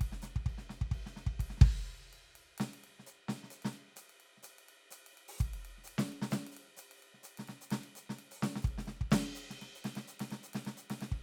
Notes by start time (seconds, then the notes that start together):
0.01 kick, ride
0.12 snare
0.22 snare, hi-hat pedal
0.36 kick
0.46 kick, ride
0.58 snare
0.70 snare
0.81 kick
0.92 kick, ride
1.06 snare
1.16 snare
1.27 kick
1.40 kick, ride
1.50 snare
1.57 snare
1.61 kick, snare, crash
2.13 ride
2.36 ride
2.58 snare, ride
2.74 ride
2.84 ride
2.99 snare
3.07 hi-hat pedal, ride
3.29 snare, ride
3.43 snare
3.51 hi-hat pedal, ride
3.62 snare, ride
3.73 ride
3.96 hi-hat pedal, ride
4.10 ride
4.20 ride
4.37 snare
4.43 hi-hat pedal, ride
4.59 ride
4.69 ride
4.91 hi-hat pedal, ride
5.07 ride
5.12 hi-hat pedal
5.18 ride
5.28 open hi-hat
5.38 kick, hi-hat pedal, ride
5.54 ride
5.59 hi-hat pedal
5.65 ride
5.78 snare
5.84 hi-hat pedal, ride
5.98 snare, ride
6.06 hi-hat pedal
6.12 ride
6.22 snare
6.31 snare, hi-hat pedal, ride
6.47 ride
6.52 hi-hat pedal
6.77 snare, hi-hat pedal, ride
6.91 ride
6.98 hi-hat pedal
7.03 ride
7.14 snare
7.23 hi-hat pedal, ride
7.38 snare, ride
7.48 snare, ride
7.61 hi-hat pedal
7.71 snare, ride
7.84 ride
7.96 hi-hat pedal, ride
8.10 snare
8.19 ride
8.31 hi-hat pedal, ride
8.43 snare, ride
8.56 snare
8.62 kick, hi-hat pedal
8.68 ride
8.78 snare, ride
8.86 snare, ride
9.01 kick
9.11 snare, ride
9.35 hi-hat pedal, ride
9.50 snare, ride
9.62 snare
9.75 hi-hat pedal
9.85 snare, ride
9.96 snare, ride
10.08 hi-hat pedal
10.20 snare, ride
10.31 snare, ride
10.43 hi-hat pedal
10.54 snare, ride
10.65 snare, ride
10.77 hi-hat pedal
10.90 snare, ride
11.01 snare, ride
11.12 kick